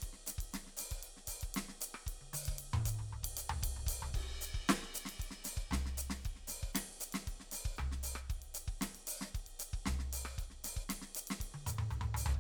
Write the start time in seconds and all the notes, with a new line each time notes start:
0.01 kick, hi-hat pedal, ride
0.13 snare
0.27 snare, hi-hat pedal, ride
0.39 kick, ride
0.52 snare, hi-hat pedal, ride
0.67 snare
0.77 snare, hi-hat pedal, ride
0.92 kick, ride
1.03 ride
1.17 snare
1.28 kick, hi-hat pedal, ride
1.42 kick, ride
1.55 snare, ride
1.69 snare
1.81 hi-hat pedal, ride
1.95 cross-stick
2.07 kick, ride
2.22 high tom
2.34 hi-hat pedal, high tom
2.46 kick, ride
2.59 ride
2.74 mid tom
2.86 kick, hi-hat pedal, ride
2.99 floor tom
3.13 floor tom
3.24 kick, ride
3.37 hi-hat pedal, ride
3.50 floor tom
3.63 kick, ride
3.77 mid tom
3.87 kick, hi-hat pedal, ride
4.03 floor tom
4.15 kick, ride
4.42 hi-hat pedal, ride
4.55 kick
4.69 snare, ride
4.83 snare
4.95 hi-hat pedal, ride
5.06 snare, ride
5.19 kick, hi-hat pedal, ride
5.31 snare
5.45 snare, hi-hat pedal, ride
5.58 kick
5.70 snare, floor tom, hi-hat pedal
5.86 snare
5.95 kick, hi-hat pedal, ride
6.10 snare
6.21 hi-hat pedal
6.26 kick, ride
6.36 snare
6.48 snare, hi-hat pedal, ride
6.63 kick
6.73 snare, hi-hat pedal, ride
7.01 hi-hat pedal, ride
7.13 snare, ride
7.28 kick, ride
7.40 snare
7.52 snare, hi-hat pedal, ride
7.66 kick
7.76 cross-stick, floor tom, hi-hat pedal
7.92 snare
8.04 hi-hat pedal, ride
8.16 cross-stick
8.30 kick, ride
8.42 ride
8.55 hi-hat pedal, ride
8.68 kick
8.79 snare, hi-hat pedal, ride
8.95 ride
9.08 hi-hat pedal, ride
9.22 snare
9.35 kick, ride
9.47 ride
9.60 hi-hat pedal, ride
9.74 kick
9.86 snare, floor tom
9.99 snare
10.13 hi-hat pedal, ride
10.26 cross-stick
10.39 kick, ride
10.50 snare
10.65 snare, hi-hat pedal, ride
10.77 kick
10.89 snare, hi-hat pedal, ride
11.02 snare
11.15 hi-hat pedal, ride
11.28 snare, ride
11.41 kick, hi-hat pedal, ride
11.55 high tom
11.67 hi-hat pedal, mid tom
11.79 mid tom
11.91 floor tom, hi-hat pedal
12.02 mid tom
12.15 floor tom, hi-hat pedal
12.26 floor tom
12.35 kick